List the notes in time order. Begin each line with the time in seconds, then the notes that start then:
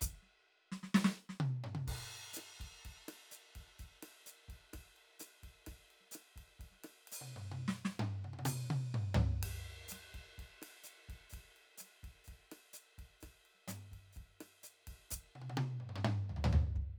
0.01 kick, hi-hat pedal
0.08 kick
0.22 snare
0.72 snare
0.83 snare
0.94 snare
1.29 snare
1.40 high tom
1.64 mid tom
1.75 high tom
1.87 kick, crash
1.93 kick
2.33 cross-stick, hi-hat pedal
2.37 cross-stick, ride
2.60 kick, ride
2.85 kick, ride
3.08 cross-stick, snare, ride
3.31 hi-hat pedal, ride
3.55 kick, ride
3.79 kick, hi-hat pedal, ride
4.03 cross-stick, ride
4.26 hi-hat pedal, ride
4.48 kick, ride
4.73 kick, cross-stick, snare, ride
4.96 ride
5.19 cross-stick, hi-hat pedal, ride
5.43 kick, ride
5.66 kick, cross-stick, snare, ride
5.90 ride
6.00 snare
6.11 cross-stick, hi-hat pedal, ride
6.36 kick, ride
6.59 kick, ride
6.64 kick
6.72 snare
6.84 cross-stick, ride
7.07 ride
7.12 hi-hat pedal
7.21 high tom
7.36 mid tom
7.52 high tom
7.68 snare
7.85 snare
7.99 mid tom
8.24 high tom
8.33 high tom
8.39 high tom
8.45 hi-hat pedal, high tom
8.70 high tom
8.94 mid tom
9.14 floor tom
9.42 kick, ride
9.47 kick
9.88 snare, hi-hat pedal, ride
10.14 kick, ride
10.38 kick, ride
10.62 cross-stick, ride
10.84 hi-hat pedal, ride
11.09 kick, ride
11.14 kick
11.30 kick, hi-hat pedal
11.34 kick, ride
11.56 ride
11.78 snare, hi-hat pedal, ride
12.03 kick, ride
12.24 kick, hi-hat pedal, ride
12.52 cross-stick, ride
12.73 hi-hat pedal, ride
12.98 kick, ride
13.20 kick, cross-stick, hi-hat pedal, ride
13.45 ride
13.54 snare
13.68 snare, hi-hat pedal, mid tom, ride
13.91 kick, ride
14.13 kick, hi-hat pedal
14.17 ride
14.21 kick, snare
14.40 cross-stick, snare, ride
14.63 hi-hat pedal, ride
14.87 kick, ride
15.11 kick, hi-hat pedal
15.17 kick
15.35 high tom
15.42 high tom
15.50 high tom
15.57 high tom
15.80 mid tom
15.89 mid tom
15.96 mid tom
16.05 mid tom
16.29 floor tom
16.36 floor tom
16.44 floor tom
16.53 floor tom
16.76 kick
16.81 kick